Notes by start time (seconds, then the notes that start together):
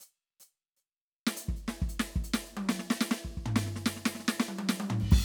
0.00 hi-hat pedal
0.40 hi-hat pedal
0.50 closed hi-hat
0.76 hi-hat pedal
1.27 snare
1.37 closed hi-hat
1.48 kick
1.56 closed hi-hat
1.68 snare
1.82 kick
1.89 closed hi-hat
1.99 snare
2.16 kick
2.24 closed hi-hat
2.34 snare
2.46 closed hi-hat
2.57 high tom
2.69 snare
2.79 snare
2.90 snare
3.01 snare
3.11 snare
3.25 kick
3.37 kick
3.46 floor tom
3.56 snare
3.66 snare
3.76 snare
3.86 snare
3.96 snare
4.05 snare
4.15 snare
4.20 snare
4.24 snare
4.28 snare
4.40 snare
4.48 high tom
4.59 high tom
4.69 snare
4.80 high tom
4.90 floor tom
5.00 kick, crash
5.11 kick, crash